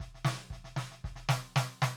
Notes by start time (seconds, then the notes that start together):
0.00 kick, snare
0.14 snare
0.25 snare
0.38 snare
0.50 kick, snare
0.64 snare
0.76 snare
0.91 snare
1.04 kick, snare
1.16 snare
1.29 snare
1.56 snare
1.82 snare